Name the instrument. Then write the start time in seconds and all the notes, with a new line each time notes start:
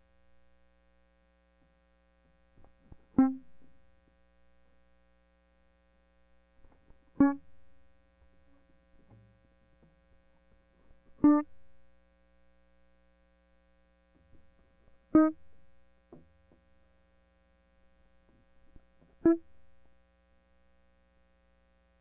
electric guitar
3.19 C4
7.21 C#4
11.25 D4
15.16 D#4
19.26 E4